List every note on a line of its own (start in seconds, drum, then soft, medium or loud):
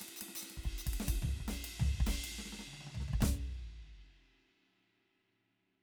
0.01 snare soft
0.01 ride medium
0.09 ride medium
0.17 hi-hat pedal medium
0.22 snare soft
0.22 ride medium
0.29 snare soft
0.36 hi-hat pedal loud
0.36 ride medium
0.43 snare soft
0.43 ride medium
0.51 snare soft
0.51 ride medium
0.58 kick soft
0.64 kick soft
0.64 hi-hat pedal soft
0.64 ride medium
0.71 snare soft
0.79 snare soft
0.79 hi-hat pedal medium
0.87 kick soft
0.87 ride medium
0.93 hi-hat pedal soft
0.93 ride medium
1.01 snare medium
1.08 kick medium
1.08 hi-hat pedal medium
1.08 ride loud
1.15 snare soft
1.23 floor tom medium
1.29 snare soft
1.37 snare soft
1.41 kick soft
1.49 snare medium
1.49 ride medium
1.65 ride medium
1.72 snare soft
1.80 floor tom loud
1.86 snare soft
1.94 snare soft
2.01 kick medium
2.07 snare medium
2.07 ride medium
2.25 ride medium
2.32 snare soft
2.39 snare medium
2.46 snare soft
2.53 snare soft
2.59 snare medium
2.68 high tom soft
2.74 high tom medium
2.81 high tom medium
2.87 high tom medium
2.95 floor tom medium
3.01 snare soft
3.09 floor tom medium
3.14 kick soft
3.21 snare loud
3.21 floor tom medium